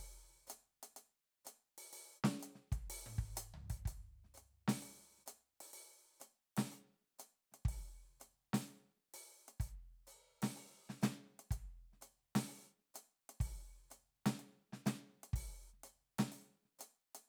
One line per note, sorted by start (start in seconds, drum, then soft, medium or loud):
0.01 open hi-hat soft
0.47 closed hi-hat medium
0.47 hi-hat pedal soft
0.83 open hi-hat medium
0.96 open hi-hat medium
1.45 closed hi-hat medium
1.45 hi-hat pedal soft
1.78 open hi-hat medium
1.93 open hi-hat medium
2.24 snare medium
2.39 closed hi-hat medium
2.39 hi-hat pedal soft
2.55 snare soft
2.72 kick soft
2.72 closed hi-hat soft
2.90 open hi-hat medium
3.06 high tom soft
3.18 kick soft
3.35 closed hi-hat medium
3.35 hi-hat pedal soft
3.54 floor tom soft
3.70 kick soft
3.70 open hi-hat soft
3.85 kick soft
3.85 open hi-hat medium
4.24 snare soft
4.34 closed hi-hat soft
4.34 hi-hat pedal soft
4.67 snare medium
4.67 open hi-hat medium
4.82 open hi-hat soft
5.18 snare soft
5.26 closed hi-hat medium
5.26 hi-hat pedal soft
5.60 open hi-hat medium
5.73 open hi-hat medium
6.20 closed hi-hat soft
6.20 hi-hat pedal soft
6.57 snare medium
6.57 open hi-hat medium
6.71 open hi-hat soft
7.19 closed hi-hat medium
7.19 hi-hat pedal soft
7.51 snare soft
7.51 closed hi-hat soft
7.65 kick soft
7.65 open hi-hat soft
8.20 closed hi-hat soft
8.20 hi-hat pedal soft
8.53 snare medium
8.53 open hi-hat medium
8.67 open hi-hat soft
9.14 hi-hat pedal soft
9.14 open hi-hat medium
9.48 closed hi-hat soft
9.60 kick soft
9.60 open hi-hat soft
10.07 hi-hat pedal soft
10.42 snare medium
10.42 open hi-hat medium
10.55 open hi-hat soft
10.89 snare soft
11.01 snare medium
11.01 closed hi-hat medium
11.01 hi-hat pedal soft
11.39 closed hi-hat soft
11.51 kick soft
11.51 open hi-hat medium
11.92 snare soft
12.01 closed hi-hat soft
12.01 hi-hat pedal soft
12.35 snare medium
12.35 open hi-hat medium
12.48 open hi-hat soft
12.94 closed hi-hat medium
12.94 hi-hat pedal soft
13.29 closed hi-hat soft
13.40 kick soft
13.40 open hi-hat soft
13.90 closed hi-hat soft
13.90 hi-hat pedal soft
14.26 snare medium
14.26 open hi-hat medium
14.39 open hi-hat soft
14.72 snare soft
14.85 snare medium
14.85 closed hi-hat medium
14.85 hi-hat pedal soft
15.23 closed hi-hat soft
15.33 kick soft
15.33 open hi-hat medium
15.72 snare soft
15.83 hi-hat pedal soft
15.83 open hi-hat soft
16.18 snare medium
16.18 open hi-hat medium
16.32 open hi-hat soft
16.64 snare soft
16.79 closed hi-hat medium
16.79 hi-hat pedal soft
17.15 closed hi-hat medium